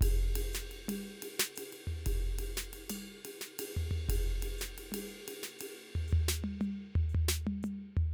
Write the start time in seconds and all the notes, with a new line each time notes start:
0.01 kick, ride
0.35 ride
0.53 snare, hi-hat pedal
0.71 ride
0.88 mid tom, ride
1.02 hi-hat pedal
1.22 ride
1.39 snare
1.56 hi-hat pedal, ride
1.73 ride
1.87 floor tom
2.06 kick, ride
2.39 ride
2.57 snare, hi-hat pedal
2.73 ride
2.90 mid tom, ride bell
3.25 ride
3.41 snare
3.58 hi-hat pedal, ride
3.76 floor tom
3.86 kick
3.91 floor tom
4.09 kick, ride
4.42 ride
4.58 snare, hi-hat pedal
4.78 ride
4.92 mid tom, ride
5.08 hi-hat pedal
5.28 ride
5.43 snare
5.59 hi-hat pedal, ride
5.95 floor tom
6.08 hi-hat pedal
6.13 floor tom
6.28 snare
6.44 mid tom
6.61 hi-hat pedal, mid tom
6.95 floor tom
7.09 hi-hat pedal
7.15 floor tom
7.28 snare
7.47 mid tom
7.63 hi-hat pedal, mid tom
7.97 floor tom